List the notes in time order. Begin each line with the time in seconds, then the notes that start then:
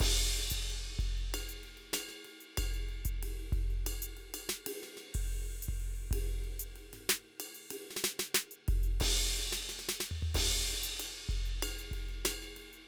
0.00 kick, ride
0.34 ride
0.50 closed hi-hat, kick
0.70 ride
0.85 closed hi-hat
0.99 kick, ride
1.17 closed hi-hat
1.34 ride bell
1.49 closed hi-hat
1.63 ride
1.77 ride
1.93 snare, ride bell
2.08 snare
2.24 ride
2.40 closed hi-hat
2.57 kick, ride bell
2.74 closed hi-hat
2.89 ride
3.05 closed hi-hat, kick
3.23 ride
3.39 closed hi-hat
3.52 kick, ride
3.70 closed hi-hat
3.86 ride bell
4.02 closed hi-hat
4.17 ride
4.34 ride bell
4.49 snare
4.66 ride
4.83 snare
4.97 snare
5.14 kick, crash
5.30 closed hi-hat
5.46 ride
5.62 closed hi-hat
5.68 kick
5.80 ride
5.95 closed hi-hat
6.11 kick, ride
6.28 closed hi-hat
6.44 ride
6.59 closed hi-hat
6.76 ride
6.93 snare, high tom, ride, floor tom
7.09 snare
7.40 ride bell
7.54 open hi-hat
7.70 hi-hat pedal, ride
7.90 snare
7.96 snare
8.04 snare
8.19 snare
8.34 snare
8.51 closed hi-hat
8.68 kick, ride
8.83 closed hi-hat
9.00 kick, ride
9.17 closed hi-hat
9.35 crash
9.52 snare
9.62 hi-hat pedal
9.69 snare
9.79 snare
9.89 snare
10.00 snare
10.11 floor tom
10.22 floor tom
10.34 kick, ride
10.51 closed hi-hat
10.67 ride
10.83 closed hi-hat
10.99 ride bell
11.14 closed hi-hat
11.29 kick, ride
11.45 closed hi-hat
11.62 ride bell
11.78 closed hi-hat
11.91 kick, ride
12.08 ride bell
12.25 snare, ride bell
12.42 snare
12.56 ride
12.73 closed hi-hat